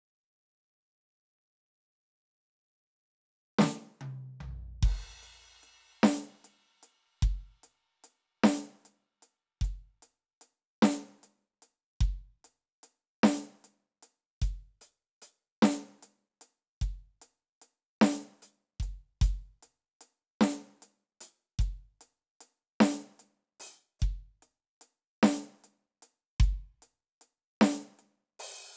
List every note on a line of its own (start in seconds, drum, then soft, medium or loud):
3.58 snare loud
3.61 snare loud
4.01 high tom medium
4.40 floor tom medium
4.83 kick loud
4.83 ride medium
4.83 crash medium
5.22 closed hi-hat soft
5.63 closed hi-hat soft
6.03 snare loud
6.03 closed hi-hat medium
6.44 closed hi-hat medium
6.83 closed hi-hat medium
7.22 kick loud
7.22 closed hi-hat medium
7.63 closed hi-hat medium
8.04 closed hi-hat medium
8.44 snare loud
8.44 closed hi-hat medium
8.85 closed hi-hat medium
9.22 closed hi-hat medium
9.61 kick medium
9.61 closed hi-hat medium
10.02 closed hi-hat medium
10.41 closed hi-hat medium
10.82 snare loud
10.82 closed hi-hat medium
11.23 closed hi-hat medium
11.62 closed hi-hat medium
12.01 kick loud
12.01 closed hi-hat soft
12.44 closed hi-hat medium
12.83 closed hi-hat medium
13.23 snare loud
13.23 closed hi-hat medium
13.64 closed hi-hat medium
14.03 closed hi-hat medium
14.42 closed hi-hat medium
14.42 kick medium
14.81 closed hi-hat medium
15.22 closed hi-hat medium
15.62 closed hi-hat medium
15.62 snare loud
16.02 closed hi-hat medium
16.41 closed hi-hat medium
16.81 kick medium
16.81 closed hi-hat medium
17.21 closed hi-hat medium
17.62 closed hi-hat medium
18.01 closed hi-hat medium
18.01 snare loud
18.18 snare soft
18.42 closed hi-hat medium
18.80 kick medium
18.80 closed hi-hat medium
19.21 closed hi-hat medium
19.21 kick loud
19.62 closed hi-hat medium
20.01 closed hi-hat medium
20.41 snare loud
20.41 closed hi-hat medium
20.82 closed hi-hat medium
21.21 closed hi-hat medium
21.59 kick loud
21.59 closed hi-hat medium
22.01 closed hi-hat medium
22.41 closed hi-hat medium
22.80 closed hi-hat medium
22.80 snare loud
23.19 closed hi-hat medium
23.60 open hi-hat loud
23.99 kick medium
23.99 hi-hat pedal soft
24.04 closed hi-hat soft
24.42 closed hi-hat soft
24.81 closed hi-hat medium
25.23 snare loud
25.23 closed hi-hat medium
25.64 closed hi-hat medium
26.02 closed hi-hat medium
26.40 kick loud
26.40 closed hi-hat medium
26.82 closed hi-hat medium
27.21 closed hi-hat medium
27.61 closed hi-hat medium
27.61 snare loud
27.99 closed hi-hat soft
28.39 open hi-hat loud